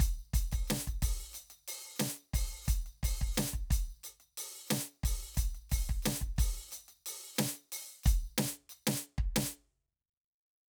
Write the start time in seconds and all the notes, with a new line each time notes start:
0.01 closed hi-hat, kick
0.34 kick, percussion
0.52 kick, percussion
0.68 snare, hi-hat pedal
0.88 kick, closed hi-hat
1.03 kick, percussion
1.34 closed hi-hat, hi-hat pedal
1.51 closed hi-hat
1.68 percussion
1.97 closed hi-hat, snare, hi-hat pedal
2.17 closed hi-hat
2.34 kick, percussion
2.66 closed hi-hat, kick, hi-hat pedal
2.87 closed hi-hat
3.04 kick, percussion
3.22 kick
3.36 closed hi-hat, snare, hi-hat pedal
3.54 kick, closed hi-hat
3.71 kick, percussion
4.04 hi-hat pedal, percussion
4.21 closed hi-hat
4.38 percussion
4.68 closed hi-hat, snare, hi-hat pedal
4.88 closed hi-hat
5.04 kick, percussion
5.35 closed hi-hat, kick, hi-hat pedal
5.55 closed hi-hat
5.70 kick, hi-hat pedal, percussion
5.90 kick
6.03 closed hi-hat, snare, hi-hat pedal
6.22 kick, closed hi-hat
6.37 kick, hi-hat pedal, percussion
6.72 closed hi-hat, hi-hat pedal
6.89 closed hi-hat
7.07 percussion
7.37 closed hi-hat, snare, hi-hat pedal
7.56 closed hi-hat
7.73 percussion
8.04 closed hi-hat, kick, hi-hat pedal
8.39 snare
8.70 hi-hat pedal
8.88 snare
9.19 kick
9.37 snare